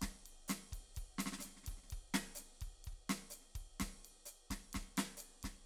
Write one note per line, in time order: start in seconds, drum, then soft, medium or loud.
0.01 kick soft
0.01 snare medium
0.01 hi-hat pedal soft
0.01 ride medium
0.08 kick soft
0.26 ride soft
0.48 snare medium
0.48 hi-hat pedal medium
0.48 ride medium
0.72 kick soft
0.72 ride soft
0.77 kick soft
0.94 kick soft
0.94 hi-hat pedal soft
0.94 ride soft
1.02 kick soft
1.18 snare medium
1.18 ride medium
1.26 snare medium
1.32 snare soft
1.39 snare soft
1.39 hi-hat pedal medium
1.43 snare soft
1.43 ride soft
1.50 snare soft
1.56 snare soft
1.63 snare soft
1.63 ride medium
1.68 kick soft
1.68 snare soft
1.73 kick soft
1.77 snare soft
1.83 snare soft
1.86 snare soft
1.87 snare soft
1.87 hi-hat pedal soft
1.87 ride soft
1.92 kick soft
1.97 kick soft
2.14 snare medium
2.14 ride medium
2.35 hi-hat pedal medium
2.35 ride soft
2.39 snare soft
2.61 kick soft
2.61 ride soft
2.67 kick soft
2.84 kick soft
2.84 ride soft
2.92 kick soft
3.09 snare medium
3.09 ride medium
3.30 hi-hat pedal medium
3.30 ride soft
3.41 snare soft
3.55 kick soft
3.55 ride soft
3.60 kick soft
3.80 kick soft
3.80 snare medium
3.80 ride medium
3.87 kick soft
4.05 ride soft
4.25 hi-hat pedal medium
4.25 ride soft
4.50 kick soft
4.50 snare medium
4.50 ride medium
4.73 kick soft
4.73 snare medium
4.73 ride soft
4.81 kick soft
4.97 snare medium
4.97 ride medium
5.17 hi-hat pedal medium
5.17 ride soft
5.43 kick soft
5.43 snare soft
5.43 ride soft